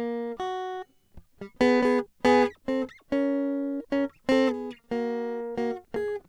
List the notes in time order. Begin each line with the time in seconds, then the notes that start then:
0.01 A#3
0.41 F#4
1.61 B3 G#4
1.83 B3 G#4
2.25 B3 G#4
2.69 C4 A4
3.13 C#4 A#4
3.93 C#4 A#4
4.30 C4 A4
4.48 B3 G#4
4.92 A#3 F#4
5.59 A#3 F#4
5.95 A#3 G#4